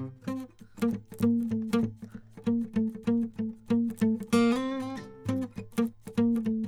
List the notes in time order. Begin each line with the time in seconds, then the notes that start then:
0.01 C3
0.28 C4
0.82 A#3
1.23 A#3
1.52 A3
1.74 A#3
2.47 A#3
2.77 A3
3.08 A#3
3.39 A3
3.71 A#3
4.02 A3
4.33 A#3
4.53 C4
5.29 C4
5.78 A#3
6.18 A#3
6.37 A3
6.46 A3